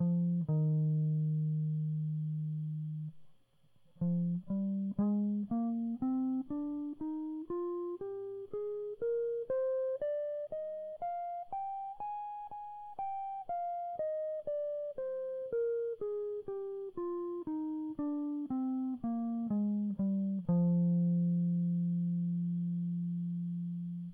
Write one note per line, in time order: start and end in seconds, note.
0.01 0.45 F3
0.50 3.12 D#3
4.02 4.40 F3
4.51 4.95 G3
4.99 5.46 G#3
5.52 5.98 A#3
6.03 6.45 C4
6.51 6.97 D4
7.01 7.46 D#4
7.50 7.98 F4
8.01 8.49 G4
8.54 8.97 G#4
9.02 9.45 A#4
9.50 9.99 C5
10.02 10.48 D5
10.52 10.99 D#5
11.02 11.45 F5
11.53 12.00 G5
12.01 12.50 G#5
12.52 12.96 G#5
12.99 13.46 G5
13.49 13.99 F5
13.99 14.43 D#5
14.47 14.94 D5
14.98 15.53 C5
15.53 15.97 A#4
16.02 16.43 G#4
16.48 16.92 G4
16.98 17.46 F4
17.47 17.95 D#4
17.99 18.49 D4
18.51 18.98 C4
19.04 19.52 A#3
19.51 19.96 G#3
20.00 20.43 G3
20.50 24.13 F3